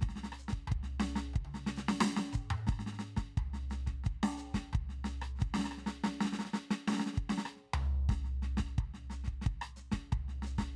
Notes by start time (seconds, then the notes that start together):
0.01 kick, snare
0.09 snare
0.14 snare
0.16 snare
0.23 snare
0.32 cross-stick
0.39 hi-hat pedal
0.48 snare
0.53 kick
0.67 floor tom
0.72 kick
0.83 snare
1.00 snare, hi-hat pedal
1.16 snare
1.33 kick, high tom
1.45 high tom
1.54 snare
1.66 snare
1.76 snare, hi-hat pedal
1.88 snare
2.01 snare
2.06 hi-hat pedal
2.17 snare
2.33 kick, hi-hat pedal, mid tom
2.50 mid tom
2.67 kick, snare
2.72 cross-stick
2.77 cross-stick, snare
2.86 snare
2.93 snare
2.99 snare, hi-hat pedal
3.17 kick, snare
3.37 kick, floor tom
3.54 snare
3.70 snare, hi-hat pedal
3.87 kick, snare
4.04 kick, snare
4.23 snare
4.37 snare, hi-hat pedal
4.54 kick, snare
4.73 kick, floor tom
4.89 snare
5.04 snare, hi-hat pedal
5.22 cross-stick
5.35 snare
5.39 kick, snare
5.54 snare
5.59 snare
5.64 cross-stick, snare
5.71 cross-stick
5.74 cross-stick, snare
5.81 snare
5.86 snare
5.97 snare
6.04 snare
6.21 snare
6.25 snare
6.29 snare
6.33 snare
6.39 snare
6.45 snare
6.54 snare
6.71 snare
6.88 snare
6.92 snare
6.97 snare
7.00 snare
7.06 snare
7.13 snare
7.17 kick
7.29 snare
7.38 snare
7.45 cross-stick
7.52 cross-stick
7.56 snare
7.74 floor tom
8.09 kick, snare
8.24 snare
8.42 snare, hi-hat pedal
8.57 kick, snare
8.66 snare
8.78 kick, floor tom
8.94 snare
9.10 snare, hi-hat pedal
9.24 kick, snare
9.41 snare
9.46 kick
9.62 cross-stick
9.76 snare, hi-hat pedal
9.92 kick, snare
10.12 kick, floor tom
10.28 snare
10.42 snare, hi-hat pedal
10.58 kick, snare